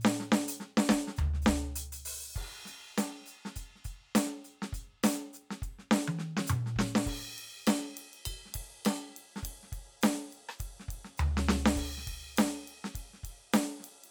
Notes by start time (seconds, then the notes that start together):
0.01 snare, hi-hat pedal
0.20 snare, hi-hat pedal
0.32 snare
0.48 closed hi-hat
0.60 snare
0.77 snare
0.89 kick, snare
1.07 snare
1.16 kick, floor tom, hi-hat pedal
1.24 kick
1.27 kick
1.34 snare
1.42 hi-hat pedal
1.46 kick, snare
1.76 closed hi-hat
1.92 open hi-hat
2.05 open hi-hat
2.10 kick
2.34 kick, hi-hat pedal, crash
2.42 kick
2.46 kick
2.65 closed hi-hat, snare
2.98 closed hi-hat, snare
3.09 snare
3.26 closed hi-hat, hi-hat pedal
3.45 snare
3.56 closed hi-hat, kick
3.75 snare
3.84 closed hi-hat, kick
4.15 closed hi-hat, snare
4.26 snare
4.44 closed hi-hat
4.62 snare
4.73 closed hi-hat, kick
4.79 kick
4.82 kick
4.93 kick
5.03 open hi-hat, snare
5.13 snare
5.33 hi-hat pedal, open hi-hat
5.51 snare
5.62 kick, closed hi-hat
5.68 kick
5.71 kick
5.79 snare
5.91 snare
5.96 snare
6.08 high tom
6.19 snare
6.37 snare
6.47 hi-hat pedal, mid tom
6.66 snare
6.76 kick, snare
6.84 kick
6.95 snare
7.06 kick, crash
7.13 kick
7.17 kick
7.28 snare
7.31 snare
7.37 snare, ride
7.67 snare, hi-hat pedal, ride bell
7.80 snare
7.97 ride
8.13 ride
8.25 kick, hi-hat pedal, ride bell
8.35 kick
8.46 snare
8.51 snare, ride
8.55 kick
8.61 kick
8.85 snare, hi-hat pedal, ride bell
9.16 ride
9.36 snare
9.42 kick, hi-hat pedal, ride
9.63 snare
9.68 snare
9.72 kick, ride
9.78 kick
9.81 kick
10.01 snare, hi-hat pedal, ride
10.13 snare
10.30 hi-hat pedal, ride
10.49 cross-stick
10.59 kick, hi-hat pedal, ride
10.66 kick
10.69 kick
10.80 snare
10.88 kick, ride
10.98 kick
11.05 snare
11.17 hi-hat pedal, floor tom
11.37 snare
11.49 snare
11.66 snare
11.76 kick, crash
11.82 kick
11.98 snare
12.07 kick, ride
12.13 kick
12.16 kick
12.36 snare, hi-hat pedal, ride
12.46 snare
12.68 ride
12.84 snare
12.95 kick, ride
13.13 snare
13.23 kick, ride
13.53 snare, hi-hat pedal, ride
13.62 snare
13.80 snare, hi-hat pedal
13.84 cross-stick, ride
13.91 snare
14.04 ride